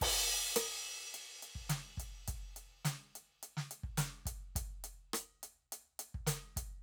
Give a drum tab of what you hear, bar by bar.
CC |x---------------|----------------|----------------|
HH |----x-x-x-x-x-x-|x-x-x-x-x-x-x-x-|x-x-x-x-x-x-x-x-|
SD |----r-------o---|----o----o--o---|----r-------o---|
BD |o----------g--o-|o----------o--o-|o----------o--o-|